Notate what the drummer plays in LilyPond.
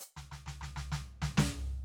\new DrumStaff \drummode { \time 4/4 \tempo 4 = 130 \tuplet 3/2 { hhp8 <tomfh sn>8 <tomfh sn>8 <tomfh sn>8 <tomfh sn>8 <tomfh sn>8 <sn tomfh>8 r8 <tomfh sn>8 } <tomfh sn>4 | }